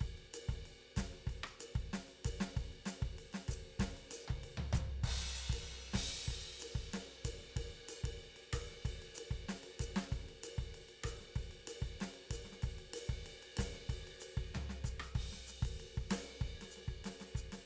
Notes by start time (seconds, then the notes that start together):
0.01 kick, ride
0.18 ride
0.34 hi-hat pedal, ride
0.49 kick, snare
0.66 ride
0.82 ride
0.97 kick, snare, hi-hat pedal, ride
1.12 snare
1.27 kick, ride
1.44 cross-stick
1.60 hi-hat pedal, ride
1.76 kick
1.93 snare, ride
2.09 ride
2.25 kick, hi-hat pedal, ride
2.41 snare
2.57 kick, ride
2.72 ride
2.86 snare, hi-hat pedal, ride
3.02 kick
3.19 ride
3.33 snare, ride
3.49 kick, hi-hat pedal, ride
3.80 kick, snare, ride
3.97 ride
4.11 hi-hat pedal, ride
4.28 kick, high tom
4.44 ride
4.58 floor tom
4.73 kick, floor tom, hi-hat pedal
5.04 kick, crash, ride
5.35 hi-hat pedal
5.50 kick, ride
5.94 kick, snare, hi-hat pedal, ride
6.28 kick, ride
6.47 ride
6.60 hi-hat pedal, ride
6.75 kick
6.94 snare, ride
7.25 kick, hi-hat pedal, ride
7.41 snare
7.56 kick, ride
7.73 snare
7.88 hi-hat pedal, ride
8.04 kick, ride
8.18 snare
8.37 ride
8.53 kick, cross-stick, hi-hat pedal, ride
8.71 snare
8.85 kick, ride
9.02 ride
9.15 hi-hat pedal, ride
9.31 kick
9.49 snare, ride
9.64 ride
9.80 kick, hi-hat pedal, ride
9.96 snare
10.12 kick, ride
10.29 ride
10.43 hi-hat pedal, ride
10.58 kick, snare
10.75 ride
10.89 ride
11.04 kick, cross-stick, hi-hat pedal, ride
11.20 snare
11.36 kick, ride
11.51 ride
11.68 hi-hat pedal, ride
11.82 kick
12.01 snare, ride
12.14 ride
12.31 kick, hi-hat pedal, ride
12.45 snare
12.52 snare
12.63 kick, ride
12.79 ride
12.94 hi-hat pedal, ride
13.09 kick, snare
13.26 ride
13.43 ride
13.57 kick, snare, hi-hat pedal, ride
13.74 snare
13.89 kick, ride
14.07 ride
14.20 hi-hat pedal, ride
14.37 kick
14.55 snare, floor tom
14.70 snare
14.85 kick, hi-hat pedal, ride
15.00 cross-stick
15.15 kick, ride
15.32 snare
15.47 snare, hi-hat pedal
15.63 kick, ride
15.80 ride
15.97 kick
16.10 snare, hi-hat pedal, ride
16.30 snare
16.41 kick
16.62 snare, ride
16.71 hi-hat pedal
16.76 snare, ride
16.88 kick
17.05 snare, ride
17.21 snare, ride
17.35 kick, hi-hat pedal
17.52 snare, ride